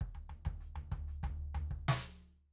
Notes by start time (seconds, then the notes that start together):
0.01 kick
0.15 floor tom
0.29 floor tom
0.45 kick, floor tom
0.60 snare
0.76 floor tom
0.92 kick, floor tom
1.07 snare
1.23 kick, floor tom
1.55 floor tom
1.71 kick
1.88 snare